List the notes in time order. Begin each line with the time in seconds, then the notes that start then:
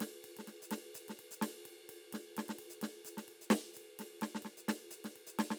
0.01 snare, ride
0.23 hi-hat pedal, ride
0.37 snare, ride
0.48 snare, ride
0.62 hi-hat pedal
0.71 snare, ride
0.95 hi-hat pedal, ride
1.09 snare, ride
1.20 ride
1.31 hi-hat pedal
1.42 snare, ride
1.66 ride
1.90 ride
2.13 snare, ride
2.37 snare, ride
2.49 snare, ride
2.59 ride
2.70 hi-hat pedal
2.82 snare, ride
3.05 hi-hat pedal, ride
3.18 snare, ride
3.42 hi-hat pedal
3.51 snare, ride
3.74 hi-hat pedal, ride
4.00 snare, ride
4.22 snare, ride
4.35 snare
4.43 snare, ride
4.58 hi-hat pedal
4.69 snare, ride
4.91 hi-hat pedal, ride
5.05 snare, ride
5.16 ride
5.27 hi-hat pedal
5.39 snare, ride
5.51 snare